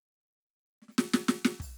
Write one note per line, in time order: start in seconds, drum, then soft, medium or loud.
0.82 snare soft
0.89 snare soft
0.89 percussion soft
0.99 snare loud
1.14 snare loud
1.29 snare loud
1.45 snare loud
1.60 kick medium
1.60 percussion medium